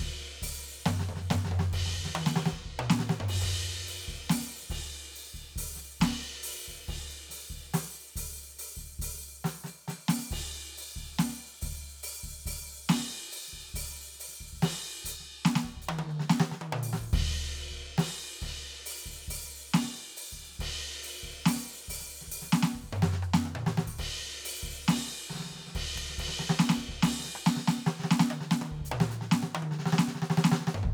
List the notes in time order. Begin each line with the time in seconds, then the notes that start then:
0.01 kick, crash
0.43 open hi-hat, kick
0.67 mid tom
0.86 kick, snare, floor tom
1.00 snare
1.08 kick, floor tom
1.17 snare
1.31 snare, floor tom
1.46 snare
1.50 kick, floor tom
1.60 snare
1.73 kick, ride
1.87 snare
1.92 kick, high tom
2.06 snare
2.15 hi-hat pedal, high tom
2.27 snare
2.37 snare
2.53 kick
2.66 kick
2.80 mid tom
2.91 snare
3.00 snare
3.10 snare
3.21 floor tom
3.29 crash
3.35 kick
3.42 kick, ride
3.88 open hi-hat
4.09 kick, open hi-hat
4.30 open hi-hat, snare
4.50 open hi-hat
4.63 snare
4.67 snare
4.71 kick, snare, crash
5.16 open hi-hat
5.35 kick, open hi-hat
5.57 open hi-hat, kick
5.76 snare, open hi-hat
6.01 kick, snare, ride
6.24 open hi-hat
6.44 open hi-hat
6.50 kick
6.65 kick, open hi-hat
6.89 kick, crash
7.10 open hi-hat
7.30 open hi-hat, snare
7.37 snare
7.42 snare
7.45 snare
7.48 kick, snare
7.53 open hi-hat
7.74 open hi-hat, snare
7.93 open hi-hat
8.17 open hi-hat, kick
8.37 open hi-hat
8.59 open hi-hat
8.78 kick, open hi-hat
9.00 open hi-hat, kick
9.24 open hi-hat
9.45 open hi-hat, snare
9.65 open hi-hat, snare
9.89 open hi-hat, snare
10.09 open hi-hat, snare
10.32 kick, crash
10.78 open hi-hat
10.97 kick, open hi-hat
11.19 open hi-hat, snare
11.39 open hi-hat
11.62 open hi-hat, kick, snare
11.83 open hi-hat
12.04 open hi-hat
12.24 kick, open hi-hat
12.47 open hi-hat, kick
12.60 snare
12.64 snare
12.69 open hi-hat
12.90 snare, crash
13.10 open hi-hat
13.33 open hi-hat
13.48 snare
13.54 kick, open hi-hat
13.75 open hi-hat, kick
13.98 open hi-hat
14.16 snare
14.21 open hi-hat
14.29 snare
14.41 kick
14.54 kick
14.58 kick
14.63 snare, crash
15.05 open hi-hat, kick
15.11 hi-hat pedal
15.21 snare
15.46 snare
15.56 snare
15.65 kick
15.78 kick
15.83 hi-hat pedal
15.89 high tom
15.99 high tom
16.10 cross-stick
16.20 snare
16.30 snare
16.41 snare
16.52 snare
16.62 high tom
16.73 mid tom
16.84 open hi-hat
16.94 snare
17.01 kick
17.14 kick, ride
17.71 kick
17.99 snare, crash
18.43 kick, ride
18.86 open hi-hat
19.07 kick, open hi-hat
19.29 open hi-hat, kick
19.51 open hi-hat
19.74 snare, crash
19.97 open hi-hat
20.18 open hi-hat
20.32 kick, snare
20.41 snare
20.47 snare
20.51 snare
20.58 kick, snare, ride
21.04 open hi-hat
21.24 kick, open hi-hat
21.46 open hi-hat, snare
21.66 kick, open hi-hat
21.86 kick, snare
21.90 open hi-hat
22.01 snare
22.06 kick
22.11 open hi-hat
22.22 snare
22.28 kick, open hi-hat
22.42 snare
22.53 snare
22.76 kick
22.85 kick
22.93 floor tom
22.99 hi-hat pedal
23.03 snare
23.23 cross-stick
23.34 snare
23.46 high tom
23.56 mid tom
23.67 snare
23.78 snare
23.88 kick, open hi-hat
23.99 kick, ride
24.46 open hi-hat
24.64 kick
24.89 snare, crash
25.08 snare
25.31 kick, snare
25.35 snare
25.40 snare
25.46 snare
25.51 kick, snare
25.55 snare
25.59 snare
25.61 snare
25.68 snare
25.72 kick, snare, ride
25.97 kick, ride bell
26.10 snare
26.19 kick, ride
26.29 snare
26.40 kick, snare
26.50 snare
26.60 snare
26.78 kick
26.89 kick
27.03 snare, crash
27.20 snare
27.25 snare
27.36 cross-stick
27.47 snare
27.57 snare
27.68 snare, hi-hat pedal
27.87 snare
28.00 snare
28.04 snare
28.12 snare
28.19 snare, hi-hat pedal
28.31 high tom
28.41 snare
28.52 snare, hi-hat pedal
28.62 high tom
28.72 kick
28.82 kick, hi-hat pedal
28.92 mid tom
29.01 snare
29.12 hi-hat pedal
29.22 snare
29.32 snare
29.43 snare
29.56 high tom
29.63 high tom
29.72 snare
29.80 snare
29.86 snare
29.93 snare
29.99 snare
30.08 snare
30.16 snare
30.23 snare
30.31 snare
30.38 snare
30.45 snare
30.53 snare
30.61 snare
30.68 snare
30.75 floor tom
30.84 kick, floor tom